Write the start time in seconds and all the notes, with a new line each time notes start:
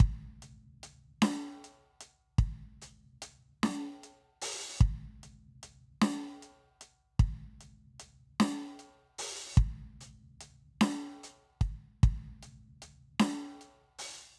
0.01 kick, closed hi-hat, hi-hat pedal
0.43 closed hi-hat
0.84 closed hi-hat
1.23 closed hi-hat, snare
1.65 closed hi-hat
2.02 closed hi-hat
2.39 kick, closed hi-hat
2.83 closed hi-hat
3.23 closed hi-hat
3.64 closed hi-hat, snare
3.66 snare
4.04 closed hi-hat
4.42 open hi-hat
4.79 kick, hi-hat pedal
4.84 closed hi-hat
5.24 closed hi-hat
5.64 closed hi-hat
6.03 snare, closed hi-hat
6.43 closed hi-hat
6.82 closed hi-hat
7.20 kick, closed hi-hat
7.62 closed hi-hat
8.01 closed hi-hat
8.41 closed hi-hat, snare
8.80 closed hi-hat
9.19 open hi-hat
9.56 kick, hi-hat pedal
9.61 closed hi-hat
10.02 closed hi-hat
10.42 closed hi-hat
10.82 snare, closed hi-hat
11.24 closed hi-hat
11.62 kick, closed hi-hat
12.04 kick, closed hi-hat
12.44 closed hi-hat
12.83 closed hi-hat
13.21 closed hi-hat, snare
13.62 closed hi-hat
14.00 open hi-hat